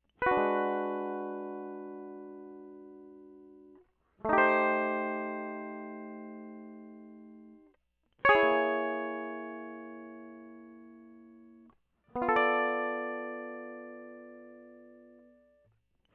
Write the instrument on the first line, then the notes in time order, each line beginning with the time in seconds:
electric guitar
0.23 B4
0.27 F#4
0.32 D4
0.39 G#3
4.26 A3
4.30 D#4
4.34 G4
4.39 C5
8.26 C#5
8.30 G#4
8.36 E4
8.44 A#3
12.17 B3
12.23 F4
12.29 A4
12.37 D5